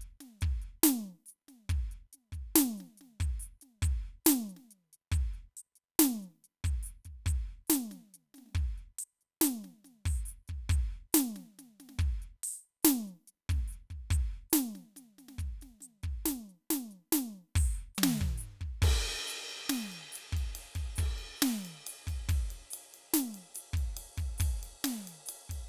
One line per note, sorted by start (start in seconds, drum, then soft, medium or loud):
0.01 closed hi-hat medium
0.20 snare soft
0.20 closed hi-hat medium
0.41 kick medium
0.41 closed hi-hat medium
0.62 closed hi-hat soft
0.83 closed hi-hat loud
0.83 snare loud
1.26 closed hi-hat soft
1.26 hi-hat pedal medium
1.48 snare soft
1.48 closed hi-hat soft
1.69 kick medium
1.69 closed hi-hat medium
1.91 closed hi-hat soft
2.13 snare soft
2.13 closed hi-hat medium
2.32 kick soft
2.32 closed hi-hat soft
2.56 closed hi-hat loud
2.56 snare loud
2.78 snare soft
2.78 closed hi-hat soft
2.97 snare soft
2.97 closed hi-hat soft
3.20 open hi-hat medium
3.20 kick medium
3.40 closed hi-hat soft
3.40 hi-hat pedal medium
3.61 snare soft
3.61 closed hi-hat medium
3.82 open hi-hat medium
3.82 kick medium
4.25 closed hi-hat loud
4.25 snare loud
4.25 hi-hat pedal medium
4.49 closed hi-hat soft
4.56 snare soft
4.71 closed hi-hat soft
4.93 closed hi-hat soft
5.12 closed hi-hat medium
5.12 kick medium
5.34 closed hi-hat soft
5.57 closed hi-hat medium
5.75 closed hi-hat soft
5.99 closed hi-hat loud
5.99 snare loud
6.06 snare soft
6.22 closed hi-hat soft
6.44 closed hi-hat soft
6.64 open hi-hat medium
6.64 kick medium
6.83 closed hi-hat soft
6.83 hi-hat pedal medium
7.05 kick soft
7.05 closed hi-hat soft
7.26 open hi-hat medium
7.26 kick medium
7.67 closed hi-hat loud
7.67 snare loud
7.67 hi-hat pedal soft
7.91 snare soft
7.91 closed hi-hat soft
8.14 snare soft
8.14 closed hi-hat medium
8.34 snare soft
8.34 closed hi-hat soft
8.38 snare soft
8.46 snare soft
8.49 snare soft
8.55 kick medium
8.55 snare soft
8.55 closed hi-hat soft
8.78 closed hi-hat soft
8.99 closed hi-hat loud
9.21 closed hi-hat soft
9.41 closed hi-hat loud
9.41 snare loud
9.64 snare soft
9.64 closed hi-hat soft
9.84 snare soft
9.84 closed hi-hat soft
10.05 open hi-hat medium
10.05 kick medium
10.25 closed hi-hat soft
10.25 hi-hat pedal medium
10.48 kick soft
10.48 closed hi-hat soft
10.69 open hi-hat medium
10.69 kick medium
10.69 ride soft
11.13 closed hi-hat loud
11.13 snare loud
11.13 hi-hat pedal soft
11.36 snare soft
11.36 closed hi-hat soft
11.59 snare soft
11.59 closed hi-hat medium
11.80 snare soft
11.80 closed hi-hat soft
11.89 snare soft
11.99 kick medium
11.99 closed hi-hat soft
12.22 closed hi-hat soft
12.43 open hi-hat loud
12.83 closed hi-hat medium
12.83 snare loud
12.83 hi-hat pedal soft
13.07 closed hi-hat soft
13.27 closed hi-hat medium
13.49 kick medium
13.49 snare soft
13.49 open hi-hat medium
13.68 hi-hat pedal medium
13.72 closed hi-hat soft
13.90 kick soft
13.90 closed hi-hat soft
14.10 open hi-hat medium
14.10 kick medium
14.50 closed hi-hat medium
14.50 snare loud
14.50 hi-hat pedal soft
14.75 snare soft
14.75 closed hi-hat soft
14.96 snare soft
14.96 closed hi-hat medium
15.18 snare soft
15.18 closed hi-hat soft
15.28 snare soft
15.38 kick soft
15.38 closed hi-hat medium
15.61 snare soft
15.61 closed hi-hat soft
15.81 closed hi-hat medium
15.81 snare soft
16.03 kick soft
16.03 closed hi-hat soft
16.26 closed hi-hat medium
16.26 snare medium
16.49 closed hi-hat soft
16.70 closed hi-hat medium
16.70 snare medium
16.91 closed hi-hat soft
17.12 closed hi-hat medium
17.12 snare medium
17.37 closed hi-hat soft
17.55 open hi-hat medium
17.55 kick medium
17.95 hi-hat pedal medium
17.95 high tom loud
18.03 snare loud
18.21 kick medium
18.38 hi-hat pedal medium
18.61 kick soft
18.82 kick medium
18.82 crash medium
18.82 ride loud
19.27 hi-hat pedal medium
19.27 ride medium
19.49 ride soft
19.69 snare medium
19.69 ride medium
19.92 ride soft
20.12 hi-hat pedal medium
20.12 ride medium
20.32 kick medium
20.37 ride medium
20.55 ride medium
20.75 kick soft
20.75 ride medium
20.96 kick medium
20.96 hi-hat pedal loud
20.96 ride medium
21.18 ride soft
21.36 hi-hat pedal soft
21.42 snare loud
21.42 ride loud
21.65 ride medium
21.86 hi-hat pedal medium
21.86 ride loud
22.07 kick soft
22.07 ride medium
22.29 kick medium
22.29 hi-hat pedal soft
22.29 ride medium
22.50 ride medium
22.70 hi-hat pedal loud
22.70 ride medium
22.94 ride medium
23.14 snare loud
23.14 ride loud
23.34 ride medium
23.55 hi-hat pedal loud
23.55 ride medium
23.73 kick medium
23.73 ride medium
23.97 ride loud
24.17 kick soft
24.17 ride medium
24.38 kick medium
24.38 hi-hat pedal loud
24.38 ride loud
24.63 ride medium
24.81 snare medium
24.81 hi-hat pedal soft
24.86 ride loud
25.07 ride medium
25.26 hi-hat pedal loud
25.26 ride loud
25.49 kick soft
25.49 ride medium